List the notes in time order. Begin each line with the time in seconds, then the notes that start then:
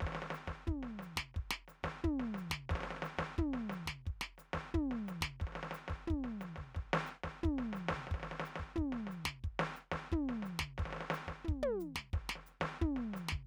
0.01 kick, snare
0.07 snare
0.13 snare
0.15 snare
0.23 snare
0.31 snare, hi-hat pedal
0.48 kick, snare
0.67 kick, floor tom
0.83 snare
1.00 snare, hi-hat pedal
1.17 kick, snare
1.35 kick, snare
1.51 snare
1.68 snare, hi-hat pedal
1.84 kick, snare
2.04 kick, floor tom
2.20 snare
2.35 snare, hi-hat pedal
2.50 kick, snare
2.70 kick, snare
2.76 snare
2.81 snare
2.84 snare
2.97 snare
3.03 snare, hi-hat pedal
3.19 kick, snare
3.38 kick, floor tom
3.54 snare
3.70 snare, hi-hat pedal
3.86 kick, snare
4.06 kick, snare
4.22 snare
4.38 snare, hi-hat pedal
4.54 kick, snare
4.63 snare
4.74 kick, floor tom
4.92 snare
5.08 snare, hi-hat pedal
5.22 kick, snare
5.41 kick, snare
5.47 snare
5.53 snare
5.56 snare
5.63 snare
5.72 snare, hi-hat pedal
5.88 kick, snare
6.07 kick, floor tom
6.25 snare
6.41 snare, hi-hat pedal
6.56 kick, snare
6.75 kick, snare
6.94 snare
7.07 snare, hi-hat pedal
7.24 kick, snare
7.43 kick, floor tom
7.59 snare
7.73 snare, hi-hat pedal
7.89 kick, snare
8.08 snare
8.12 kick, snare
8.20 snare
8.24 snare
8.32 snare
8.40 snare
8.46 hi-hat pedal
8.56 kick, snare
8.76 kick, floor tom
8.93 snare
9.07 snare, hi-hat pedal
9.25 kick, snare
9.45 kick, snare
9.60 snare
9.76 snare, hi-hat pedal
9.92 kick, snare
10.12 kick, floor tom
10.29 snare
10.43 snare, hi-hat pedal
10.60 kick, snare
10.79 kick, snare
10.86 snare
10.91 snare
10.93 snare
10.97 snare
11.11 snare, hi-hat pedal
11.28 kick, snare
11.45 floor tom
11.49 kick
11.63 high tom
11.81 hi-hat pedal
11.96 kick, snare
12.14 kick, snare
12.30 snare
12.36 snare
12.47 snare, hi-hat pedal
12.61 kick, snare
12.81 kick, floor tom
12.97 snare
13.14 snare, hi-hat pedal
13.29 kick, snare